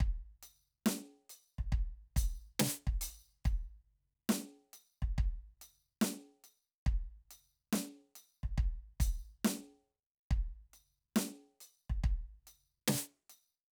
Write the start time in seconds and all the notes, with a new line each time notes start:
0.01 kick
0.43 closed hi-hat
0.87 snare
1.30 closed hi-hat
1.59 kick
1.73 kick
2.17 closed hi-hat, kick
2.60 snare
2.88 kick
3.02 closed hi-hat
3.45 kick, hi-hat pedal
4.30 snare
4.74 closed hi-hat
5.03 kick
5.19 kick, crash, ride
5.62 closed hi-hat
6.02 snare
6.45 closed hi-hat
6.87 kick
7.31 closed hi-hat
7.73 snare
8.16 closed hi-hat
8.44 kick
8.58 kick
9.01 closed hi-hat, kick
9.45 snare
10.31 kick
10.74 closed hi-hat
11.17 snare
11.61 closed hi-hat
11.90 kick
12.04 kick, crash, ride
12.48 closed hi-hat
12.88 snare
13.30 closed hi-hat